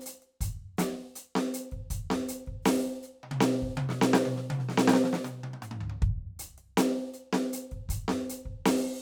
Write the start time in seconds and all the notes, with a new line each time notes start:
0.01 hi-hat pedal
0.06 closed hi-hat
0.22 closed hi-hat
0.41 closed hi-hat, kick
0.60 closed hi-hat
0.78 closed hi-hat, snare, hi-hat pedal
1.16 closed hi-hat
1.35 snare
1.54 closed hi-hat
1.72 kick, closed hi-hat
1.90 closed hi-hat, kick
2.10 snare
2.29 closed hi-hat
2.47 kick, closed hi-hat
2.62 open hi-hat, snare, hi-hat pedal
3.03 hi-hat pedal
3.23 high tom
3.31 high tom
3.41 snare, hi-hat pedal
3.62 kick
3.75 hi-hat pedal, high tom
3.89 snare
4.02 snare
4.13 snare
4.25 high tom
4.36 snare
4.50 hi-hat pedal, high tom
4.59 snare
4.69 snare
4.78 snare
4.88 snare
4.94 snare
5.04 snare
5.13 snare
5.25 hi-hat pedal, high tom
5.44 high tom
5.53 high tom
5.62 hi-hat pedal, mid tom
5.71 kick, mid tom
5.81 floor tom
5.90 floor tom
6.02 kick
6.39 closed hi-hat
6.58 closed hi-hat
6.77 closed hi-hat, snare
7.14 closed hi-hat
7.33 snare
7.53 closed hi-hat
7.71 kick, closed hi-hat
7.89 closed hi-hat, kick
8.08 snare
8.30 closed hi-hat
8.45 kick
8.66 open hi-hat, snare